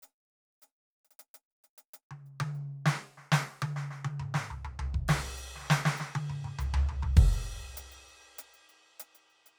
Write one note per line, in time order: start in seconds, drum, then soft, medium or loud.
0.02 hi-hat pedal loud
0.62 hi-hat pedal medium
1.05 closed hi-hat soft
1.11 closed hi-hat soft
1.19 closed hi-hat medium
1.34 closed hi-hat medium
1.51 closed hi-hat soft
1.64 closed hi-hat soft
1.78 closed hi-hat medium
1.94 closed hi-hat medium
2.11 high tom medium
2.26 closed hi-hat soft
2.40 high tom loud
2.55 closed hi-hat soft
2.86 snare loud
3.17 snare soft
3.21 snare soft
3.32 snare loud
3.45 snare soft
3.48 snare soft
3.50 snare soft
3.54 snare soft
3.62 high tom loud
3.76 snare medium
3.91 snare soft
4.04 high tom loud
4.20 mid tom medium
4.34 snare loud
4.50 floor tom medium
4.65 floor tom medium
4.79 floor tom loud
4.94 kick medium
5.08 snare loud
5.08 crash medium
5.27 snare soft
5.37 hi-hat pedal medium
5.55 snare soft
5.60 snare soft
5.63 snare soft
5.67 snare soft
5.70 snare loud
5.85 snare loud
5.97 snare medium
5.97 hi-hat pedal medium
6.15 high tom loud
6.29 mid tom medium
6.44 mid tom medium
6.59 floor tom loud
6.59 hi-hat pedal loud
6.74 floor tom loud
6.89 floor tom medium
7.02 kick medium
7.02 floor tom medium
7.15 kick loud
7.15 hi-hat pedal soft
7.15 crash medium
7.33 closed hi-hat soft
7.44 closed hi-hat soft
7.60 closed hi-hat soft
7.77 closed hi-hat loud
7.92 closed hi-hat soft
8.08 closed hi-hat soft
8.22 closed hi-hat soft
8.38 closed hi-hat loud
8.54 closed hi-hat soft
8.69 closed hi-hat soft
9.00 closed hi-hat loud
9.15 closed hi-hat medium
9.30 closed hi-hat soft
9.46 closed hi-hat medium